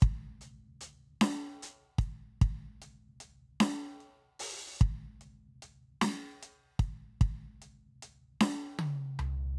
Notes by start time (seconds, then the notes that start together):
0.01 kick, closed hi-hat, hi-hat pedal
0.42 closed hi-hat
0.81 closed hi-hat
1.22 closed hi-hat, snare
1.63 closed hi-hat
1.99 kick, closed hi-hat
2.42 kick, closed hi-hat
2.82 closed hi-hat
3.21 closed hi-hat
3.61 snare, closed hi-hat
4.01 closed hi-hat
4.40 open hi-hat
4.80 kick, closed hi-hat, hi-hat pedal
5.21 closed hi-hat
5.63 closed hi-hat
6.02 snare, closed hi-hat
6.43 closed hi-hat
6.80 kick, closed hi-hat
7.21 kick, closed hi-hat
7.62 closed hi-hat
8.03 closed hi-hat
8.41 open hi-hat, snare
8.79 high tom
9.20 floor tom, hi-hat pedal